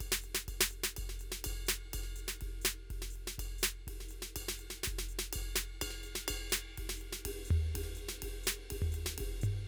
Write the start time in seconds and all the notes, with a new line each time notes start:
0.01 kick, ride bell
0.07 kick
0.12 snare
0.22 hi-hat pedal, ride
0.35 snare
0.49 kick, ride bell
0.54 kick
0.61 snare
0.70 hi-hat pedal, ride
0.84 snare
0.97 kick, ride bell
1.10 snare
1.20 hi-hat pedal, ride
1.32 snare
1.45 kick, ride bell
1.53 kick
1.67 snare, hi-hat pedal
1.94 kick, ride bell
2.04 snare
2.16 hi-hat pedal, ride
2.28 snare
2.41 kick, ride
2.48 kick
2.62 snare, hi-hat pedal
2.91 kick, ride
3.02 snare
3.11 hi-hat pedal
3.16 ride
3.28 snare
3.39 kick, ride bell
3.59 hi-hat pedal
3.63 snare
3.88 kick, ride
4.01 snare
4.09 hi-hat pedal, ride
4.23 snare
4.36 kick, ride bell
4.42 kick
4.49 snare
4.58 hi-hat pedal, ride
4.71 snare
4.84 kick, snare, ride
4.94 kick
4.99 snare
5.09 hi-hat pedal
5.19 snare
5.33 kick, ride bell
5.42 kick
5.56 snare, hi-hat pedal
5.82 kick, ride bell
5.88 kick, snare
6.04 hi-hat pedal, ride
6.16 snare
6.28 kick, ride bell
6.36 kick
6.50 snare, hi-hat pedal
6.78 kick, ride
6.84 kick
6.90 snare
6.97 hi-hat pedal
7.02 ride
7.13 snare
7.26 kick, ride
7.31 kick
7.46 hi-hat pedal
7.51 floor tom
7.75 kick, ride
7.84 snare
7.96 hi-hat pedal, ride
8.09 snare
8.23 kick, ride
8.44 snare, hi-hat pedal
8.71 kick, ride
8.78 kick
8.82 floor tom
8.92 hi-hat pedal, ride
9.06 snare
9.18 kick, ride
9.27 kick
9.42 hi-hat pedal, floor tom